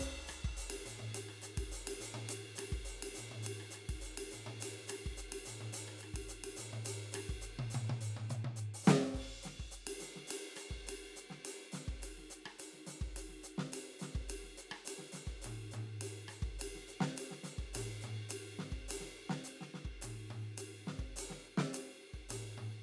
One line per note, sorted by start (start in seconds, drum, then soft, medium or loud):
0.01 kick soft
0.01 hi-hat pedal medium
0.01 ride medium
0.28 cross-stick medium
0.28 hi-hat pedal medium
0.45 kick medium
0.57 hi-hat pedal medium
0.70 ride loud
0.86 hi-hat pedal medium
0.86 high tom soft
1.00 high tom medium
1.15 hi-hat pedal medium
1.15 ride loud
1.29 cross-stick soft
1.42 cross-stick soft
1.42 hi-hat pedal medium
1.42 ride medium
1.58 kick soft
1.58 ride medium
1.72 hi-hat pedal medium
1.88 ride loud
2.01 hi-hat pedal medium
2.01 high tom soft
2.15 high tom medium
2.29 hi-hat pedal loud
2.29 ride loud
2.56 cross-stick medium
2.56 hi-hat pedal medium
2.56 ride loud
2.72 kick soft
2.85 hi-hat pedal medium
3.03 ride loud
3.15 hi-hat pedal medium
3.15 high tom soft
3.32 high tom medium
3.43 hi-hat pedal medium
3.43 ride loud
3.60 cross-stick soft
3.71 cross-stick soft
3.71 hi-hat pedal medium
3.77 ride soft
3.89 kick soft
3.89 ride medium
4.02 hi-hat pedal medium
4.18 ride loud
4.31 hi-hat pedal medium
4.31 high tom soft
4.47 high tom medium
4.61 hi-hat pedal medium
4.61 ride loud
4.88 cross-stick medium
4.88 hi-hat pedal medium
4.88 ride loud
5.06 kick soft
5.17 hi-hat pedal medium
5.33 ride loud
5.45 hi-hat pedal medium
5.45 high tom soft
5.61 high tom medium
5.73 hi-hat pedal loud
5.73 ride medium
5.88 cross-stick soft
5.98 hi-hat pedal medium
5.98 ride medium
6.03 cross-stick soft
6.14 kick soft
6.14 ride medium
6.29 hi-hat pedal medium
6.44 ride loud
6.57 hi-hat pedal medium
6.57 high tom soft
6.73 high tom medium
6.85 hi-hat pedal loud
6.85 ride loud
7.13 cross-stick medium
7.13 hi-hat pedal medium
7.13 ride loud
7.30 kick soft
7.42 hi-hat pedal medium
7.59 high tom medium
7.71 hi-hat pedal medium
7.75 high tom medium
7.90 high tom medium
8.01 hi-hat pedal medium
8.17 high tom medium
8.30 hi-hat pedal medium
8.30 high tom medium
8.45 high tom medium
8.57 hi-hat pedal medium
8.74 open hi-hat medium
8.84 snare loud
8.84 hi-hat pedal medium
9.15 kick soft
9.15 ride medium
9.43 snare soft
9.43 hi-hat pedal medium
9.60 kick soft
9.72 hi-hat pedal medium
9.87 ride loud
10.00 snare soft
10.00 hi-hat pedal medium
10.16 snare soft
10.28 hi-hat pedal medium
10.28 ride loud
10.56 cross-stick soft
10.56 hi-hat pedal medium
10.71 kick soft
10.71 snare soft
10.87 hi-hat pedal medium
10.87 ride loud
11.17 hi-hat pedal medium
11.30 snare soft
11.45 hi-hat pedal medium
11.45 ride loud
11.72 snare soft
11.72 hi-hat pedal medium
11.88 kick soft
12.02 hi-hat pedal medium
12.02 ride medium
12.18 snare soft
12.31 hi-hat pedal medium
12.46 cross-stick medium
12.59 hi-hat pedal medium
12.59 ride medium
12.73 snare soft
12.87 snare soft
12.87 hi-hat pedal medium
13.02 kick soft
13.17 hi-hat pedal medium
13.17 ride medium
13.29 snare soft
13.44 hi-hat pedal medium
13.58 snare medium
13.72 hi-hat pedal medium
13.72 ride loud
14.00 snare soft
14.00 hi-hat pedal medium
14.15 kick soft
14.29 hi-hat pedal medium
14.29 ride loud
14.44 snare soft
14.58 hi-hat pedal medium
14.72 cross-stick medium
14.85 hi-hat pedal medium
14.85 ride loud
14.99 snare soft
15.12 snare soft
15.12 hi-hat pedal medium
15.27 kick soft
15.42 hi-hat pedal medium
15.42 ride medium
15.46 high tom medium
15.72 hi-hat pedal medium
15.72 high tom medium
16.02 hi-hat pedal medium
16.02 ride loud
16.29 cross-stick medium
16.29 hi-hat pedal soft
16.43 kick soft
16.59 hi-hat pedal medium
16.59 ride loud
16.75 snare soft
16.88 hi-hat pedal medium
17.01 snare medium
17.17 hi-hat pedal medium
17.17 ride loud
17.31 snare soft
17.44 snare soft
17.44 hi-hat pedal medium
17.59 kick soft
17.74 hi-hat pedal medium
17.74 high tom medium
17.74 ride loud
18.02 hi-hat pedal medium
18.02 high tom medium
18.30 hi-hat pedal medium
18.30 ride loud
18.59 snare soft
18.72 kick soft
18.89 hi-hat pedal medium
18.89 ride loud
19.01 snare soft
19.30 snare medium
19.44 hi-hat pedal medium
19.44 ride medium
19.61 snare soft
19.74 snare soft
19.85 kick soft
20.02 hi-hat pedal medium
20.02 high tom medium
20.02 ride medium
20.31 high tom medium
20.58 hi-hat pedal medium
20.58 ride loud
20.87 snare soft
20.99 kick soft
21.16 hi-hat pedal loud
21.16 ride medium
21.30 snare soft
21.58 snare medium
21.74 hi-hat pedal medium
21.74 ride loud
22.14 kick soft
22.29 hi-hat pedal medium
22.29 high tom medium
22.29 ride loud
22.58 high tom medium